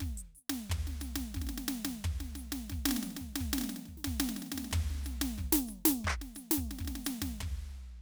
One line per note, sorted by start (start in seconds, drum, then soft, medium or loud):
0.01 kick soft
0.01 snare soft
0.18 closed hi-hat medium
0.36 snare soft
0.36 hi-hat pedal soft
0.50 kick soft
0.50 snare medium
0.70 kick soft
0.70 floor tom loud
0.88 snare soft
1.01 snare soft
1.01 hi-hat pedal medium
1.16 kick soft
1.16 snare medium
1.35 kick soft
1.35 snare soft
1.42 snare soft
1.47 snare soft
1.49 snare soft
1.58 snare medium
1.69 snare medium
1.69 hi-hat pedal soft
1.85 kick soft
1.85 snare medium
2.05 kick soft
2.05 floor tom medium
2.21 snare soft
2.36 snare soft
2.36 hi-hat pedal medium
2.51 kick soft
2.51 snare medium
2.70 kick soft
2.70 snare soft
2.86 snare loud
2.89 snare medium
2.91 snare medium
2.97 snare medium
3.03 snare soft
3.03 hi-hat pedal medium
3.11 snare soft
3.17 snare medium
3.22 kick soft
3.33 snare soft
3.36 snare medium
3.41 kick soft
3.54 snare medium
3.59 snare medium
3.62 snare medium
3.64 snare soft
3.70 snare soft
3.70 hi-hat pedal soft
3.77 snare soft
3.86 kick soft
3.86 snare soft
3.98 snare soft
4.05 kick soft
4.05 snare medium
4.21 snare medium
4.29 snare medium
4.37 snare soft
4.37 hi-hat pedal soft
4.43 snare soft
4.47 snare soft
4.52 kick soft
4.52 snare medium
4.58 snare medium
4.65 snare soft
4.72 kick soft
4.72 snare soft
4.72 floor tom loud
4.91 snare soft
4.95 snare soft
4.99 snare soft
5.04 snare soft
5.04 hi-hat pedal medium
5.21 kick soft
5.21 snare medium
5.38 kick soft
5.38 snare soft
5.53 snare medium
5.68 snare soft
5.68 hi-hat pedal medium
5.85 kick soft
5.85 snare loud
6.05 kick soft
6.05 percussion medium
6.22 snare soft
6.36 snare soft
6.36 hi-hat pedal medium
6.52 snare medium
6.58 kick soft
6.71 snare soft
6.79 kick soft
6.79 snare soft
6.85 snare soft
6.88 snare medium
6.96 snare soft
7.05 snare medium
7.05 hi-hat pedal medium
7.22 kick soft
7.22 snare medium
7.41 kick soft
7.41 floor tom medium